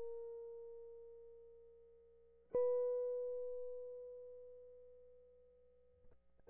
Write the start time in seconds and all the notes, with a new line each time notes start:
2.55 B4